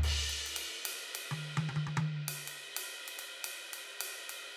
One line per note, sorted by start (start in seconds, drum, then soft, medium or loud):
0.04 ride loud
0.30 ride medium
0.47 ride medium
0.57 ride loud
0.86 ride loud
1.15 ride loud
1.32 high tom medium
1.58 high tom loud
1.69 high tom medium
1.76 high tom medium
1.87 high tom medium
1.98 high tom loud
2.29 ride loud
2.48 ride medium
2.77 ride loud
3.08 ride medium
3.20 ride medium
3.45 ride loud
3.74 ride medium
4.01 ride loud
4.30 ride medium